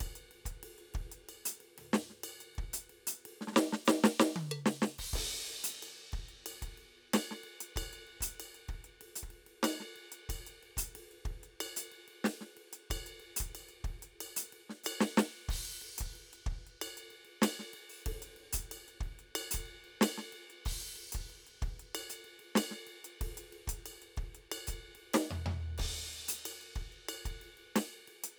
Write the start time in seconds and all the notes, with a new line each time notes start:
0.01 kick, ride bell
0.16 closed hi-hat
0.32 ride
0.46 kick, closed hi-hat
0.63 ride
0.78 closed hi-hat
0.94 kick, ride
1.12 closed hi-hat
1.29 cross-stick, ride bell
1.46 closed hi-hat
1.61 ride
1.78 cross-stick, high tom, ride, floor tom
1.82 hi-hat pedal
1.94 snare
2.10 snare
2.24 ride bell
2.41 closed hi-hat
2.56 kick, ride
2.74 closed hi-hat
2.90 ride
3.07 closed hi-hat
3.26 ride
3.41 snare
3.48 snare
3.53 snare
3.57 snare
3.73 snare
3.86 snare, hi-hat pedal
4.04 snare
4.20 snare
4.36 high tom
4.52 percussion
4.66 snare
4.82 snare
4.99 kick, crash
5.14 kick, ride
5.33 closed hi-hat
5.47 ride
5.64 closed hi-hat
5.83 ride bell
5.98 closed hi-hat
6.13 kick, ride
6.29 closed hi-hat
6.47 ride bell
6.62 kick, closed hi-hat
6.78 ride
7.14 snare, ride bell
7.31 snare
7.44 ride
7.61 closed hi-hat
7.76 kick, ride bell
7.93 closed hi-hat
8.07 ride
8.21 closed hi-hat, kick
8.40 ride bell
8.55 closed hi-hat
8.69 kick, ride
8.85 closed hi-hat
9.01 cross-stick, ride
9.16 closed hi-hat
9.23 kick
9.31 ride
9.47 ride
9.63 snare, ride bell
9.81 snare
9.96 ride
10.12 closed hi-hat
10.29 kick, ride bell
10.47 closed hi-hat
10.63 ride
10.77 closed hi-hat, kick
10.96 ride
11.12 closed hi-hat
11.26 kick, ride
11.44 closed hi-hat
11.61 ride bell
11.77 closed hi-hat
11.92 ride
12.08 ride
12.25 snare, ride
12.41 snare
12.57 ride
12.73 closed hi-hat
12.91 kick, ride bell
13.07 closed hi-hat
13.20 ride
13.37 closed hi-hat, kick
13.55 ride bell
13.69 closed hi-hat
13.85 kick, ride
14.03 closed hi-hat
14.21 ride bell
14.37 closed hi-hat
14.53 ride
14.70 snare
14.84 hi-hat pedal, ride bell
15.01 snare
15.18 snare
15.35 closed hi-hat
15.49 kick, crash
15.66 closed hi-hat
15.82 ride
15.99 kick, closed hi-hat
16.16 ride
16.33 closed hi-hat
16.47 kick
16.67 closed hi-hat
16.82 ride bell
16.98 closed hi-hat
17.11 ride
17.25 ride
17.42 snare, ride bell
17.60 snare
17.74 ride
17.90 open hi-hat
18.02 hi-hat pedal
18.06 kick, ride
18.22 closed hi-hat
18.37 ride
18.53 closed hi-hat, kick
18.72 ride bell
18.88 closed hi-hat
19.01 kick, ride
19.19 closed hi-hat
19.36 ride bell
19.51 closed hi-hat, kick
19.66 ride
19.85 ride
20.02 snare, ride bell
20.18 snare
20.33 ride
20.50 closed hi-hat
20.66 kick, crash
20.82 closed hi-hat
20.96 ride
21.13 kick, closed hi-hat
21.30 ride bell
21.47 closed hi-hat
21.62 kick, ride
21.80 closed hi-hat
21.95 ride bell
22.10 closed hi-hat
22.25 ride
22.40 ride
22.56 snare, ride bell
22.71 snare
22.87 ride
23.05 closed hi-hat
23.21 kick, ride
23.38 closed hi-hat
23.53 ride
23.68 kick, closed hi-hat
23.86 ride bell
24.02 closed hi-hat
24.17 kick, ride
24.35 closed hi-hat
24.52 ride bell
24.67 closed hi-hat, kick
24.96 ride
25.14 snare, hi-hat pedal, ride bell
25.31 floor tom
25.46 floor tom
25.78 kick, ride
25.96 closed hi-hat
26.12 ride
26.29 closed hi-hat
26.46 ride bell
26.62 closed hi-hat
26.76 kick, ride
26.93 closed hi-hat
27.09 ride bell
27.26 kick, closed hi-hat
27.42 ride
27.58 ride
27.76 snare, ride bell
28.08 ride
28.24 closed hi-hat